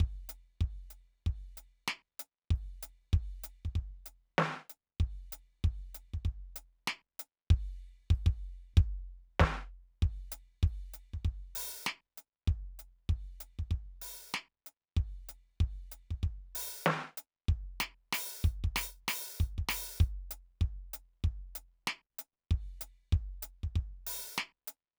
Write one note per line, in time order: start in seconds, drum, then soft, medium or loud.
0.00 kick medium
0.00 crash soft
0.29 closed hi-hat loud
0.61 kick medium
0.61 crash soft
0.90 closed hi-hat medium
1.26 kick medium
1.26 crash soft
1.57 closed hi-hat medium
1.88 snare loud
2.19 closed hi-hat loud
2.50 kick medium
2.55 crash soft
2.55 ride soft
2.83 closed hi-hat loud
3.13 kick medium
3.13 crash soft
3.43 closed hi-hat loud
3.65 kick soft
3.75 kick medium
4.06 closed hi-hat medium
4.38 snare loud
4.69 closed hi-hat medium
5.00 kick medium
5.04 crash soft
5.32 closed hi-hat loud
5.64 kick medium
5.64 crash soft
5.94 closed hi-hat loud
6.14 kick soft
6.25 kick medium
6.56 closed hi-hat loud
6.87 snare loud
7.19 closed hi-hat loud
7.50 kick medium
7.50 crash soft
8.10 kick medium
8.10 crash soft
8.15 ride soft
8.26 kick medium
8.26 crash soft
8.74 kick soft
8.77 kick loud
8.99 kick soft
9.40 kick medium
9.40 snare loud
10.02 kick medium
10.02 crash soft
10.32 closed hi-hat loud
10.63 kick medium
10.63 crash soft
10.68 ride soft
10.93 closed hi-hat medium
11.13 kick soft
11.25 kick medium
11.25 crash soft
11.55 open hi-hat loud
11.85 snare loud
11.85 hi-hat pedal medium
12.17 closed hi-hat medium
12.47 kick medium
12.79 closed hi-hat medium
13.09 kick medium
13.13 crash soft
13.40 closed hi-hat loud
13.59 kick soft
13.71 kick medium
14.01 open hi-hat medium
14.32 snare loud
14.32 hi-hat pedal medium
14.66 closed hi-hat medium
14.96 kick medium
15.01 crash soft
15.29 closed hi-hat loud
15.60 kick medium
15.64 crash soft
15.92 closed hi-hat medium
16.11 kick soft
16.23 kick medium
16.55 open hi-hat loud
16.85 snare loud
16.85 hi-hat pedal soft
17.17 closed hi-hat loud
17.48 kick medium
17.80 closed hi-hat loud
17.80 snare loud
18.12 open hi-hat loud
18.12 snare loud
18.43 kick medium
18.43 hi-hat pedal soft
18.64 kick medium
18.76 open hi-hat loud
18.76 snare loud
19.08 open hi-hat loud
19.08 snare loud
19.39 kick medium
19.39 hi-hat pedal soft
19.58 kick soft
19.69 open hi-hat loud
19.69 snare loud
19.97 kick medium
19.97 hi-hat pedal soft
20.31 closed hi-hat loud
20.61 kick medium
20.93 closed hi-hat loud
21.24 kick medium
21.55 closed hi-hat loud
21.87 snare loud
22.18 closed hi-hat loud
22.51 kick medium
22.55 crash soft
22.81 closed hi-hat loud
23.12 kick medium
23.42 closed hi-hat loud
23.63 kick soft
23.76 kick medium
24.07 open hi-hat loud
24.36 snare loud
24.36 hi-hat pedal medium
24.67 closed hi-hat loud